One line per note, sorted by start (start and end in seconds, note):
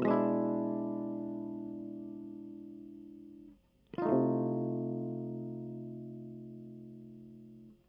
0.00 3.56 B2
0.04 0.14 E3
0.04 3.57 G#3
0.04 3.56 D4
0.11 3.52 E4
0.11 0.50 E4
3.99 7.73 D#4
3.99 7.71 F4
4.06 7.77 A3
4.11 7.74 C3
4.11 5.03 E4